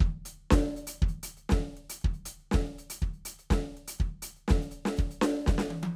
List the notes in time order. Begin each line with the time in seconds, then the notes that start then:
0.01 kick
0.26 closed hi-hat
0.38 closed hi-hat
0.51 kick, snare
0.77 closed hi-hat
0.88 closed hi-hat
0.99 kick, closed hi-hat
1.09 closed hi-hat
1.24 closed hi-hat
1.37 closed hi-hat
1.50 kick, snare
1.64 closed hi-hat
1.77 closed hi-hat
1.90 closed hi-hat
2.02 kick, closed hi-hat
2.14 closed hi-hat
2.26 closed hi-hat, kick
2.40 closed hi-hat
2.52 kick, snare
2.66 closed hi-hat
2.79 closed hi-hat
2.90 closed hi-hat
3.02 kick, closed hi-hat
3.14 closed hi-hat
3.21 kick
3.26 closed hi-hat
3.39 closed hi-hat
3.51 kick, snare
3.65 closed hi-hat
3.77 closed hi-hat
3.88 closed hi-hat
3.99 kick, closed hi-hat
4.23 closed hi-hat
4.37 closed hi-hat
4.48 kick, snare
4.62 closed hi-hat
4.72 closed hi-hat
4.86 snare
4.97 closed hi-hat, kick
5.11 closed hi-hat
5.22 snare
5.47 kick, snare
5.59 snare
5.71 high tom
5.83 high tom